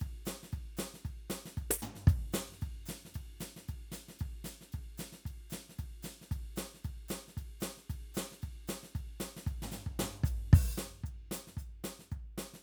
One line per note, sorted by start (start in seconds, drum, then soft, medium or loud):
0.01 kick soft
0.01 ride soft
0.26 snare medium
0.26 hi-hat pedal medium
0.26 ride medium
0.44 snare soft
0.53 kick soft
0.53 ride soft
0.78 snare medium
0.78 hi-hat pedal medium
0.78 ride soft
0.95 snare soft
1.06 kick soft
1.06 ride soft
1.31 snare medium
1.31 hi-hat pedal medium
1.31 ride medium
1.46 snare medium
1.58 kick soft
1.58 ride soft
1.71 high tom loud
1.83 floor tom loud
1.83 hi-hat pedal medium
1.96 snare soft
2.08 kick loud
2.08 ride medium
2.33 snare loud
2.33 hi-hat pedal medium
2.33 ride medium
2.53 snare soft
2.62 kick soft
2.62 ride soft
2.87 snare medium
2.87 hi-hat pedal medium
2.87 ride medium
3.06 snare soft
3.15 kick soft
3.15 ride medium
3.41 snare medium
3.41 hi-hat pedal medium
3.41 ride medium
3.57 snare soft
3.69 kick soft
3.69 ride soft
3.93 snare medium
3.93 hi-hat pedal medium
3.93 ride soft
4.09 snare soft
4.20 kick medium
4.20 ride soft
4.45 snare medium
4.45 hi-hat pedal medium
4.45 ride medium
4.62 snare soft
4.73 kick soft
4.73 ride soft
4.98 snare medium
4.98 hi-hat pedal medium
4.98 ride soft
5.13 snare soft
5.26 kick soft
5.26 ride soft
5.51 snare medium
5.51 hi-hat pedal medium
5.51 ride medium
5.70 snare soft
5.79 kick soft
5.79 ride soft
6.03 snare medium
6.03 hi-hat pedal medium
6.03 ride medium
6.22 snare soft
6.32 kick medium
6.32 ride medium
6.57 snare medium
6.57 hi-hat pedal medium
6.57 ride medium
6.75 snare soft
6.85 kick soft
6.85 ride soft
7.09 snare medium
7.09 hi-hat pedal medium
7.09 ride medium
7.29 snare soft
7.38 kick soft
7.38 ride soft
7.61 snare medium
7.61 hi-hat pedal medium
7.61 ride medium
7.78 snare soft
7.90 kick soft
7.90 ride medium
8.15 snare loud
8.15 hi-hat pedal medium
8.15 ride medium
8.32 snare soft
8.43 kick soft
8.43 ride soft
8.68 snare medium
8.68 hi-hat pedal medium
8.68 ride medium
8.84 snare soft
8.96 kick soft
8.96 ride soft
9.21 snare medium
9.21 hi-hat pedal medium
9.21 ride medium
9.37 snare medium
9.47 kick medium
9.47 ride soft
9.63 snare medium
9.63 floor tom medium
9.72 snare medium
9.72 floor tom medium
9.72 hi-hat pedal medium
9.87 kick soft
10.00 snare loud
10.00 floor tom loud
10.24 kick medium
10.24 hi-hat pedal medium
10.24 ride medium
10.54 open hi-hat medium
10.54 kick loud
10.78 open hi-hat medium
10.78 snare medium
10.78 hi-hat pedal soft
10.99 snare soft
11.04 kick soft
11.04 closed hi-hat soft
11.32 closed hi-hat loud
11.32 snare medium
11.48 snare soft
11.58 closed hi-hat soft
11.58 kick soft
11.84 closed hi-hat medium
11.84 snare medium
12.00 snare soft
12.12 kick soft
12.12 closed hi-hat soft
12.38 closed hi-hat medium
12.38 snare medium
12.54 snare soft